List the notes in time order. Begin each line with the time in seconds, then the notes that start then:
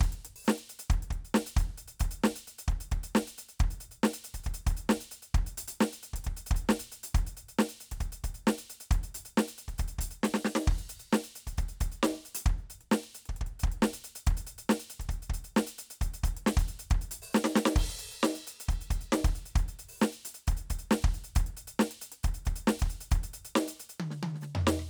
0.01 kick, closed hi-hat
0.13 closed hi-hat
0.25 closed hi-hat
0.36 open hi-hat
0.45 snare, hi-hat pedal
0.58 closed hi-hat
0.70 closed hi-hat
0.79 closed hi-hat
0.90 kick, closed hi-hat
1.03 closed hi-hat
1.11 kick
1.25 closed hi-hat
1.35 snare
1.47 closed hi-hat
1.57 closed hi-hat, kick
1.78 closed hi-hat
2.00 closed hi-hat, kick
2.11 closed hi-hat
2.24 snare
2.36 closed hi-hat
2.48 closed hi-hat
2.59 closed hi-hat
2.68 kick, closed hi-hat
2.81 closed hi-hat
2.92 kick, closed hi-hat
3.04 closed hi-hat
3.15 snare
3.28 closed hi-hat
3.38 closed hi-hat
3.49 closed hi-hat
3.60 kick, closed hi-hat
3.71 closed hi-hat
3.81 closed hi-hat
3.91 closed hi-hat
4.04 snare
4.14 closed hi-hat
4.24 closed hi-hat
4.34 kick
4.44 closed hi-hat, kick
4.54 closed hi-hat
4.67 closed hi-hat, kick
4.90 snare
5.01 closed hi-hat
5.12 closed hi-hat
5.23 closed hi-hat
5.35 kick, closed hi-hat
5.47 closed hi-hat
5.58 closed hi-hat
5.68 closed hi-hat
5.81 snare
5.93 closed hi-hat
6.14 kick, closed hi-hat
6.25 kick, closed hi-hat
6.37 closed hi-hat
6.47 closed hi-hat
6.51 kick
6.56 closed hi-hat
6.69 snare
6.80 closed hi-hat
6.92 closed hi-hat
7.04 closed hi-hat
7.15 closed hi-hat, kick
7.27 closed hi-hat
7.37 closed hi-hat
7.49 closed hi-hat
7.59 snare
7.69 closed hi-hat
7.81 closed hi-hat
7.92 kick, closed hi-hat
8.01 closed hi-hat, kick
8.12 closed hi-hat
8.24 closed hi-hat, kick
8.35 closed hi-hat
8.47 snare
8.58 closed hi-hat
8.70 closed hi-hat
8.81 closed hi-hat
8.91 kick, closed hi-hat
9.04 closed hi-hat
9.15 closed hi-hat
9.25 closed hi-hat
9.38 snare
9.48 closed hi-hat
9.58 closed hi-hat
9.68 kick, closed hi-hat
9.79 closed hi-hat, kick
9.88 closed hi-hat
9.99 closed hi-hat, kick
10.11 closed hi-hat
10.24 snare
10.34 snare
10.45 snare
10.56 snare
10.67 kick, crash
10.78 closed hi-hat
10.90 closed hi-hat
11.00 closed hi-hat
11.11 kick, snare
11.24 closed hi-hat
11.36 closed hi-hat
11.47 closed hi-hat, kick
11.58 closed hi-hat, kick
11.69 closed hi-hat
11.81 closed hi-hat, kick
11.92 closed hi-hat
12.03 snare
12.15 closed hi-hat
12.26 closed hi-hat
12.35 closed hi-hat
12.46 kick, closed hi-hat
12.58 closed hi-hat
12.70 closed hi-hat
12.81 closed hi-hat
12.92 snare
13.04 closed hi-hat
13.15 closed hi-hat
13.26 kick, closed hi-hat
13.37 closed hi-hat
13.41 kick
13.47 closed hi-hat
13.60 closed hi-hat, kick
13.72 closed hi-hat
13.83 snare
13.94 closed hi-hat
14.04 closed hi-hat
14.16 closed hi-hat
14.27 kick, closed hi-hat
14.37 closed hi-hat
14.47 closed hi-hat
14.58 closed hi-hat
14.70 snare
14.80 closed hi-hat
14.90 closed hi-hat
15.00 kick, closed hi-hat
15.09 closed hi-hat, kick
15.23 closed hi-hat
15.30 kick
15.34 closed hi-hat
15.45 closed hi-hat
15.57 snare
15.67 closed hi-hat
15.79 closed hi-hat
15.91 closed hi-hat
16.01 closed hi-hat, kick
16.14 closed hi-hat
16.24 closed hi-hat, kick
16.37 closed hi-hat
16.47 snare
16.57 closed hi-hat, kick
16.68 closed hi-hat
16.80 closed hi-hat
16.91 kick, closed hi-hat
17.02 closed hi-hat
17.11 closed hi-hat
17.22 open hi-hat
17.33 snare, hi-hat pedal
17.45 snare
17.56 snare
17.66 snare
17.76 kick, crash
17.90 closed hi-hat
17.99 closed hi-hat
18.12 closed hi-hat
18.23 snare
18.35 closed hi-hat
18.47 closed hi-hat
18.60 closed hi-hat
18.69 closed hi-hat, kick
18.81 closed hi-hat
18.91 closed hi-hat, kick
19.01 closed hi-hat
19.13 snare
19.25 closed hi-hat, kick
19.35 closed hi-hat
19.46 closed hi-hat
19.56 closed hi-hat, kick
19.68 closed hi-hat
19.79 closed hi-hat
19.89 open hi-hat
20.02 snare, hi-hat pedal
20.13 closed hi-hat
20.25 closed hi-hat
20.35 closed hi-hat
20.47 closed hi-hat, kick
20.57 closed hi-hat
20.70 closed hi-hat, kick
20.79 closed hi-hat
20.91 snare
21.03 kick, closed hi-hat
21.14 closed hi-hat
21.24 closed hi-hat
21.36 closed hi-hat, kick
21.47 closed hi-hat
21.57 closed hi-hat
21.68 closed hi-hat
21.80 snare
21.91 closed hi-hat
22.02 closed hi-hat
22.12 closed hi-hat
22.24 closed hi-hat, kick
22.34 closed hi-hat
22.46 closed hi-hat, kick
22.56 closed hi-hat
22.68 snare
22.79 closed hi-hat, kick
22.90 closed hi-hat
23.01 closed hi-hat
23.11 closed hi-hat, kick
23.24 closed hi-hat
23.45 closed hi-hat
23.56 snare
23.68 closed hi-hat
23.80 closed hi-hat
23.90 closed hi-hat
24.00 high tom
24.11 snare
24.23 high tom
24.35 snare
24.41 snare, hi-hat pedal
24.55 floor tom
24.62 kick
24.67 snare
24.80 cross-stick